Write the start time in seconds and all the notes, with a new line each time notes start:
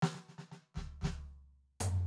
0.02 snare
0.14 snare
0.28 snare
0.38 snare
0.52 snare
0.74 kick, snare
1.01 kick, snare
1.04 snare
1.80 open hi-hat, floor tom